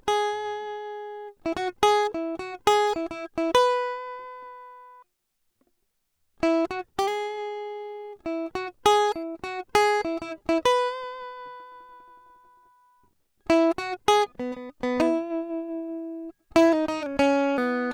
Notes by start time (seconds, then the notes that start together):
0.09 G#4
1.46 E4
1.58 F#4
1.83 G#4
2.15 E4
2.40 F#4
2.68 G#4
2.97 E4
3.12 E4
3.38 E4
3.55 B4
6.44 E4
6.71 F#4
6.99 G4
7.17 G#4
8.27 E4
8.56 F#4
8.86 G#4
9.17 E4
9.44 F#4
9.76 G#4
10.06 E4
10.23 E4
10.50 E4
10.66 B4
13.50 E4
13.79 F#4
14.09 G#4
14.40 B3
14.53 B3
14.84 B3
15.01 E4
16.56 E4
16.73 D#4
16.89 D#4
17.04 C#4
17.20 C#4
17.58 B3